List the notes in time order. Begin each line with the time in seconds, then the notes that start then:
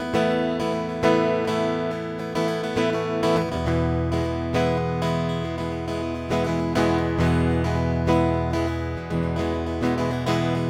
0.00 G#3 B3 E4
0.14 E2 A#2 E3 A3 B3
0.18 E4
0.25 A2
0.62 E3 A3 B3 E4
0.73 A2 E3 A3 B3
0.86 A3 B3 E4
1.04 A2 E3 A3 B3 E4
1.50 E3 A3 B3 E4
1.86 E4
1.93 A3 B3
2.20 E3 A3 B3 E4
2.38 E3 A3 B3 E4
2.49 B3 E4
2.64 A3 B3 E4
2.77 A2 E3 A3 B3 E4
2.92 B3 E4
2.96 A3
3.25 E3 A3 B3 E4
3.36 E2 E3 B3 E4
3.48 B3 E4
3.57 E2 B2
3.67 E2 B2 E3 B3 E4
4.14 E3 G#3 B3 E4
4.26 E3
4.55 E3 G#3 B3 E4
4.74 E4
5.04 E3 G#3 B3 E4
5.30 E4
5.46 E3
5.58 G#3 B3 E4
5.62 E3
5.73 E3 G#3 B3
5.90 E3 G#3 B3 E4
6.04 E3 B3
6.16 B3 E4
6.31 B2 E3 G#3 B3 E4
6.44 G#3 B3 E4
6.51 E3
6.61 G#3 B3 E4
6.78 E2 B2 E3 G#3 B3 E4
6.90 B2 E3
6.97 B3 E4
7.20 E2 B2 E3 G#3 B3 E4
7.66 B2 E3 G#3 B3 E4
7.77 B2 E3
8.09 E3 G#3 B3 E4
8.53 E3 G#3 B3 E4
8.68 E3 G#3 B3 E4
8.83 E4
8.98 E2 E3
9.12 E2 B2 E3 G#3
9.25 B2 E3
9.38 B2 E3 G#3 B3 E4
9.44 E2
9.54 E3 G#3 B3
9.69 E3 G#3 B3 E4
9.83 E2 B2 E3 G#3 B3 E4
10.00 E2 B2 E3 G#3 B3 E4
10.12 B2 E3 G#3 B3 E4
10.28 E2 B2 E3 G#3 B3 E4
10.43 G#3
10.55 G#3 B3 E4